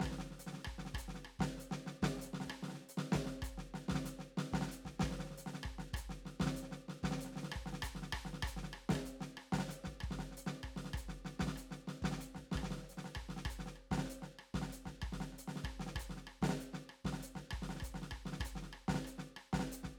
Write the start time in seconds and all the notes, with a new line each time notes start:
0.01 kick, snare
0.07 cross-stick
0.12 snare
0.19 snare
0.26 snare
0.32 snare
0.39 snare, hi-hat pedal
0.47 snare
0.54 snare
0.58 snare
0.65 kick, cross-stick
0.79 snare
0.86 snare
0.92 kick, cross-stick, snare
0.99 hi-hat pedal
1.09 snare
1.15 snare
1.26 cross-stick
1.40 kick, snare
1.58 snare, hi-hat pedal
1.72 snare
1.87 snare
2.03 kick, snare
2.18 snare
2.22 snare, hi-hat pedal
2.34 snare
2.41 snare
2.46 kick, snare
2.51 cross-stick
2.63 snare
2.69 snare
2.74 snare
2.83 snare
2.90 cross-stick, hi-hat pedal
2.98 snare
3.13 kick, snare
3.26 snare
3.43 kick, cross-stick, hi-hat pedal
3.58 snare
3.75 snare
3.89 kick, snare
3.95 snare
4.05 snare, hi-hat pedal
4.20 snare
4.38 snare
4.53 kick, snare
4.62 snare
4.68 snare, hi-hat pedal
4.86 kick, snare
5.00 kick, snare
5.06 cross-stick
5.12 snare
5.20 snare
5.26 snare
5.31 snare
5.38 snare, hi-hat pedal
5.47 snare
5.54 snare
5.64 kick, cross-stick
5.79 snare
5.94 kick, cross-stick, hi-hat pedal
6.02 kick
6.10 snare
6.26 snare
6.41 kick, snare
6.47 snare
6.54 snare, hi-hat pedal
6.63 snare
6.72 snare
6.89 snare
7.04 kick, snare
7.12 snare
7.18 snare, hi-hat pedal
7.26 snare
7.32 snare
7.37 snare
7.44 snare
7.53 kick, cross-stick
7.67 snare
7.73 snare
7.83 kick, cross-stick, hi-hat pedal
7.96 snare
8.03 snare
8.13 kick, cross-stick
8.26 snare
8.34 snare
8.43 kick, cross-stick
8.48 hi-hat pedal
8.57 snare
8.64 snare
8.74 cross-stick
8.90 kick, snare
8.96 cross-stick
9.05 snare, hi-hat pedal
9.21 snare
9.38 cross-stick
9.53 kick, snare
9.60 snare
9.69 snare, hi-hat pedal
9.85 kick, snare
10.01 kick, cross-stick
10.12 snare
10.20 snare
10.32 snare
10.38 hi-hat pedal
10.47 snare
10.64 kick, cross-stick
10.77 snare
10.85 snare
10.94 kick, cross-stick, hi-hat pedal
11.01 kick
11.09 snare
11.26 snare
11.40 kick, snare
11.48 snare
11.57 cross-stick, hi-hat pedal
11.72 snare
11.88 snare
12.03 kick, snare
12.12 snare
12.19 snare, hi-hat pedal
12.36 kick, snare
12.52 kick, snare
12.58 cross-stick
12.64 snare
12.71 snare
12.78 snare
12.83 snare
12.90 snare, hi-hat pedal
12.98 snare
13.05 snare
13.16 kick, cross-stick
13.30 snare
13.37 snare
13.46 kick, cross-stick
13.51 hi-hat pedal
13.60 snare
13.67 snare
13.77 cross-stick
13.92 kick, snare
13.98 snare
14.05 snare
14.11 hi-hat pedal
14.23 snare
14.40 cross-stick
14.55 kick, snare
14.62 snare
14.69 snare, hi-hat pedal
14.86 kick, snare
15.03 kick, cross-stick
15.13 snare
15.21 snare
15.33 snare
15.39 snare, hi-hat pedal
15.48 snare
15.57 snare
15.65 kick, cross-stick
15.80 snare
15.87 snare
15.96 kick, cross-stick, hi-hat pedal
16.10 snare
16.17 snare
16.28 cross-stick
16.42 kick, snare
16.50 snare
16.58 snare, hi-hat pedal
16.74 snare
16.90 cross-stick
17.05 kick, snare
17.13 snare
17.20 snare, hi-hat pedal
17.36 kick, snare
17.52 kick, cross-stick
17.63 snare
17.70 snare
17.76 snare
17.81 kick, cross-stick, hi-hat pedal
17.95 snare
18.03 snare
18.12 kick, cross-stick
18.26 snare
18.33 snare
18.41 kick, cross-stick
18.46 hi-hat pedal
18.56 snare
18.63 snare
18.74 cross-stick
18.89 kick, snare
18.95 snare
19.05 cross-stick, hi-hat pedal
19.19 snare
19.37 cross-stick
19.54 kick, snare
19.60 snare
19.68 cross-stick
19.73 hi-hat pedal
19.84 kick, snare